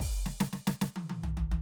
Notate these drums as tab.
Hi-hat    |o-----------|
Snare     |--ooooo-----|
High tom  |-------oo---|
Floor tom |---------ooo|
Kick      |o-----------|